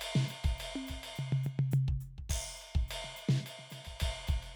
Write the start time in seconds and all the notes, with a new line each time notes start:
0.01 hi-hat pedal, ride
0.16 snare
0.28 hi-hat pedal, ride
0.44 kick, ride
0.58 hi-hat pedal, ride
0.76 high tom
0.87 kick, hi-hat pedal, ride
1.04 ride
1.16 floor tom, hi-hat pedal
1.33 floor tom
1.44 floor tom, hi-hat pedal
1.60 floor tom
1.72 floor tom, hi-hat pedal
1.89 kick
2.01 hi-hat pedal
2.19 kick
2.30 kick, hi-hat pedal, crash, ride
2.57 hi-hat pedal
2.62 ride
2.75 kick
2.88 hi-hat pedal, ride
3.05 snare
3.17 hi-hat pedal, ride
3.29 snare, ride
3.46 hi-hat pedal, ride
3.59 snare
3.70 snare, hi-hat pedal, ride
3.85 kick, ride
4.00 kick, hi-hat pedal, ride
4.28 kick, hi-hat pedal, ride
4.43 ride